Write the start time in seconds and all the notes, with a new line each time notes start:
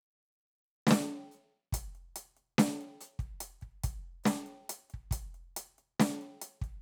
0.87 snare
0.91 snare
1.31 hi-hat pedal
1.72 kick, closed hi-hat
1.95 closed hi-hat
2.16 closed hi-hat
2.37 closed hi-hat
2.58 snare, closed hi-hat
2.81 closed hi-hat
3.01 closed hi-hat
3.19 kick, closed hi-hat
3.40 closed hi-hat
3.61 kick, closed hi-hat
3.84 kick, open hi-hat
4.24 snare, closed hi-hat, hi-hat pedal
4.46 closed hi-hat
4.69 closed hi-hat
4.90 kick, closed hi-hat
5.11 kick, closed hi-hat
5.34 closed hi-hat
5.56 closed hi-hat
5.78 closed hi-hat
6.00 snare, closed hi-hat
6.21 closed hi-hat
6.42 closed hi-hat
6.61 kick, closed hi-hat